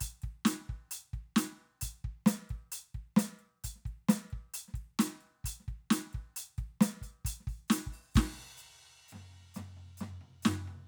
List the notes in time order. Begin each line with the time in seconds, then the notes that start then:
0.01 closed hi-hat, kick
0.22 kick, closed hi-hat
0.46 closed hi-hat, snare
0.70 kick
0.91 closed hi-hat
1.14 kick, closed hi-hat
1.37 closed hi-hat, snare
1.82 closed hi-hat, kick
2.05 kick, closed hi-hat
2.27 closed hi-hat, snare
2.50 kick, closed hi-hat
2.72 closed hi-hat
2.95 kick, closed hi-hat
3.17 closed hi-hat, snare
3.39 closed hi-hat
3.64 closed hi-hat, kick
3.76 snare
3.86 kick, closed hi-hat
4.09 closed hi-hat, snare
4.31 kick, closed hi-hat
4.54 closed hi-hat
4.68 snare
4.74 kick, closed hi-hat
5.00 closed hi-hat, snare
5.21 closed hi-hat
5.45 closed hi-hat, kick
5.60 snare
5.68 kick, closed hi-hat
5.91 closed hi-hat, snare
6.13 kick, closed hi-hat
6.37 closed hi-hat
6.58 kick, closed hi-hat
6.81 closed hi-hat, snare
7.02 closed hi-hat, kick
7.25 closed hi-hat, kick
7.40 snare
7.48 open hi-hat, kick
7.68 open hi-hat, snare, hi-hat pedal
7.87 kick
7.93 open hi-hat
8.15 kick, snare, hi-hat pedal, crash
8.58 hi-hat pedal
9.09 hi-hat pedal
9.13 snare, floor tom
9.34 floor tom
9.55 snare, floor tom, hi-hat pedal
9.77 floor tom
9.98 snare, hi-hat pedal
10.02 floor tom
10.21 floor tom
10.43 snare, floor tom, hi-hat pedal
10.68 floor tom